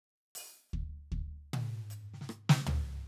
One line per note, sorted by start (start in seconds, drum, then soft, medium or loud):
0.35 percussion loud
0.69 percussion soft
0.73 kick medium
1.12 kick medium
1.53 high tom loud
1.90 percussion medium
2.14 snare soft
2.21 snare soft
2.29 cross-stick medium
2.49 snare loud
2.67 floor tom loud